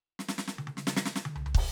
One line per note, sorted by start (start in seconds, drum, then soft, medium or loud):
0.19 snare medium
0.29 snare loud
0.38 snare loud
0.48 snare medium
0.56 kick soft
0.56 high tom loud
0.67 high tom medium
0.77 snare medium
0.87 snare loud
0.97 snare loud
1.06 snare loud
1.16 snare loud
1.25 high tom loud
1.36 floor tom medium
1.46 floor tom medium
1.55 kick loud
1.55 crash loud